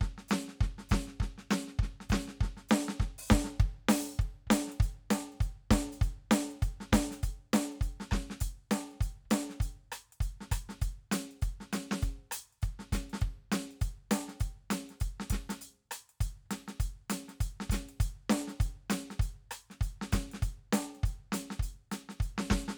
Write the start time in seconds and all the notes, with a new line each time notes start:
0.01 kick, snare
0.18 snare
0.28 snare, hi-hat pedal
0.48 snare
0.61 kick, snare
0.78 snare
0.89 kick, snare, hi-hat pedal
1.07 snare
1.20 kick, snare
1.38 snare
1.51 snare, hi-hat pedal
1.68 snare
1.79 kick, snare
2.00 snare
2.09 kick, snare, hi-hat pedal
2.28 snare
2.41 kick, snare
2.57 snare
2.69 snare, hi-hat pedal
2.88 snare
3.00 kick, snare
3.18 open hi-hat
3.28 kick, snare, hi-hat pedal
3.44 snare
3.60 kick, closed hi-hat
3.89 open hi-hat, snare
4.15 hi-hat pedal
4.19 kick, closed hi-hat
4.47 kick, snare
4.51 closed hi-hat
4.67 snare
4.72 closed hi-hat
4.80 closed hi-hat, kick
5.10 closed hi-hat, snare
5.32 closed hi-hat
5.40 closed hi-hat, kick
5.71 closed hi-hat, kick, snare
5.92 closed hi-hat
6.01 closed hi-hat, kick
6.31 closed hi-hat, snare
6.51 closed hi-hat
6.62 closed hi-hat, kick
6.80 snare
6.93 closed hi-hat, kick, snare
7.11 closed hi-hat, snare
7.15 snare
7.23 closed hi-hat, kick
7.53 closed hi-hat, snare
7.72 closed hi-hat
7.81 closed hi-hat, kick
8.00 snare
8.11 kick, cross-stick, snare
8.30 snare
8.40 closed hi-hat, kick
8.71 closed hi-hat, snare
8.91 snare, closed hi-hat
9.01 closed hi-hat, kick
9.25 kick
9.31 closed hi-hat, snare
9.50 snare, closed hi-hat
9.55 snare
9.60 closed hi-hat, kick
9.92 closed hi-hat, cross-stick
10.12 closed hi-hat
10.21 closed hi-hat, kick
10.41 snare
10.51 closed hi-hat, kick, cross-stick
10.69 snare, closed hi-hat
10.82 closed hi-hat, kick
11.12 closed hi-hat, snare
11.31 closed hi-hat
11.42 closed hi-hat, kick
11.60 snare
11.73 closed hi-hat, snare
11.91 snare, closed hi-hat
12.02 closed hi-hat, kick
12.31 closed hi-hat, cross-stick
12.53 closed hi-hat
12.62 closed hi-hat, kick
12.79 snare
12.92 closed hi-hat, kick, snare
13.10 snare, closed hi-hat
13.21 kick, closed hi-hat
13.52 closed hi-hat, snare
13.71 closed hi-hat
13.81 closed hi-hat, kick
14.11 closed hi-hat, snare
14.28 snare, closed hi-hat
14.40 closed hi-hat, kick
14.70 closed hi-hat, snare
14.89 snare, closed hi-hat
15.00 closed hi-hat, kick
15.20 snare
15.30 kick, snare, closed hi-hat
15.49 snare, closed hi-hat
15.61 closed hi-hat
15.91 closed hi-hat, cross-stick
16.09 closed hi-hat
16.21 closed hi-hat, kick
16.46 kick
16.51 snare, closed hi-hat
16.68 snare, closed hi-hat
16.80 closed hi-hat, kick
17.01 kick
17.10 closed hi-hat, snare
17.28 snare, closed hi-hat
17.40 closed hi-hat, kick
17.60 snare
17.70 closed hi-hat, kick, snare
17.89 closed hi-hat
18.00 closed hi-hat, kick
18.30 closed hi-hat, snare
18.48 snare, closed hi-hat
18.60 closed hi-hat, kick
18.90 closed hi-hat, snare
19.10 snare, closed hi-hat
19.19 closed hi-hat, kick
19.51 closed hi-hat, cross-stick
19.70 snare, closed hi-hat
19.81 closed hi-hat, kick
20.02 snare
20.12 closed hi-hat, kick, snare
20.32 snare, closed hi-hat
20.42 closed hi-hat, kick
20.73 closed hi-hat, snare
20.95 closed hi-hat
21.03 closed hi-hat, kick
21.32 closed hi-hat, snare
21.50 snare, closed hi-hat
21.59 closed hi-hat, kick
21.91 closed hi-hat, snare
22.09 snare, closed hi-hat
22.20 closed hi-hat, kick
22.38 snare
22.50 kick, snare
22.68 snare